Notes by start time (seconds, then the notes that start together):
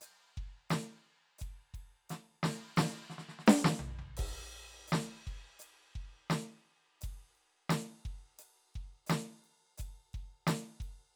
0.01 hi-hat pedal, ride
0.37 kick, ride
0.70 snare, hi-hat pedal, ride
1.39 kick, hi-hat pedal, ride
1.74 kick, ride
2.09 snare, hi-hat pedal, ride
2.43 snare, ride
2.76 snare, hi-hat pedal, ride
3.10 snare
3.18 snare
3.29 snare
3.39 snare
3.47 snare, hi-hat pedal
3.65 snare
3.79 floor tom
3.99 floor tom
4.17 kick, hi-hat pedal, crash
4.88 hi-hat pedal
4.92 snare, ride
5.27 kick, ride
5.59 hi-hat pedal, ride
5.94 kick, ride
6.30 snare, hi-hat pedal, ride
7.01 kick, hi-hat pedal, ride
7.35 ride
7.70 snare, hi-hat pedal, ride
8.05 kick, ride
8.39 hi-hat pedal, ride
8.75 kick, ride
9.07 snare, hi-hat pedal, ride
9.44 ride
9.78 kick, hi-hat pedal, ride
10.14 kick, ride
10.47 snare, hi-hat pedal, ride
10.80 kick, ride